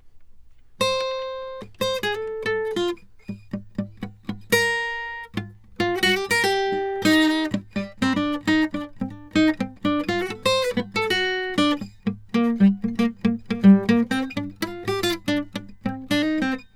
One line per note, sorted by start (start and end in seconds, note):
0.81 1.67 C5
1.81 2.01 C5
2.04 2.15 G#4
2.15 2.46 A4
2.46 2.77 A4
2.77 2.99 F4
4.53 5.30 A#4
5.38 5.52 F4
5.80 6.01 F4
6.04 6.28 F#4
6.31 6.43 A#4
6.44 6.59 E4
6.44 7.50 G4
7.06 7.50 D#4
8.02 8.16 C4
8.18 8.41 D4
8.48 8.70 D#4
8.75 8.93 D4
9.02 9.11 C4
9.11 9.31 D4
9.36 9.55 D#4
9.61 9.76 C4
9.85 10.06 D4
10.09 10.20 F4
10.21 10.36 F#4
10.31 10.44 A4
10.46 10.55 C5
10.56 10.71 C5
10.71 10.84 B4
10.96 11.15 A4
10.96 11.09 A4
11.11 11.59 F#4
11.58 11.79 D4
12.07 12.16 A#3
12.35 12.61 A#3
12.35 12.45 A#3
12.61 12.72 G3
12.85 12.97 A#3
12.99 13.13 A#3
13.25 13.39 A#3
13.51 13.67 A#3
13.64 13.89 G3
13.89 14.07 A#3
14.11 14.33 C4
14.37 14.54 D4
14.63 14.88 F4
14.88 14.99 G4
15.00 15.09 E4
15.04 15.22 F4
15.28 15.46 D4
15.56 15.74 D4
15.86 16.00 C4
16.11 16.22 D4
16.22 16.47 D#4
16.42 16.63 C4